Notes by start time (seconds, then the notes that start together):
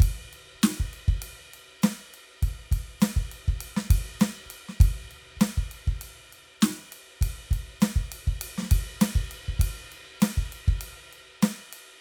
0.01 kick, ride
0.34 ride
0.55 kick
0.63 snare, hi-hat pedal, ride
0.81 kick
0.94 ride
1.09 kick
1.23 ride
1.55 ride
1.83 snare, hi-hat pedal, ride
2.15 ride
2.44 kick, ride
2.73 kick, ride
3.01 snare, hi-hat pedal, ride
3.17 kick
3.33 ride
3.49 kick
3.62 ride
3.78 snare
3.81 snare
3.84 snare
3.87 snare
3.91 kick, ride
4.21 snare, hi-hat pedal, ride
4.47 kick
4.51 ride
4.70 snare
4.81 kick, ride
5.12 ride
5.38 kick, hi-hat pedal
5.42 snare, ride
5.58 kick
5.72 ride
5.88 kick
6.02 ride
6.34 ride
6.62 snare, hi-hat pedal, ride
6.93 ride
7.22 kick, ride
7.52 kick, ride
7.81 snare, hi-hat pedal, ride
7.97 kick
8.13 ride
8.28 kick
8.42 ride
8.59 snare
8.63 snare
8.66 snare
8.69 kick, snare, ride
9.01 snare, hi-hat pedal, ride
9.16 kick
9.32 ride
9.49 kick
9.60 kick, ride
9.93 ride
10.21 snare, hi-hat pedal, ride
10.38 kick
10.53 ride
10.69 kick
10.82 ride
11.14 ride
11.43 snare, hi-hat pedal, ride
11.74 ride